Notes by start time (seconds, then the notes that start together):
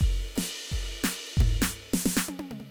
0.01 kick, snare, crash
0.36 snare, hi-hat pedal, ride
0.60 ride
0.73 kick, ride
1.05 snare, hi-hat pedal, ride
1.28 ride
1.38 kick, floor tom
1.63 snare
1.94 snare
2.06 snare
2.18 snare
2.29 high tom
2.40 high tom
2.52 mid tom
2.61 mid tom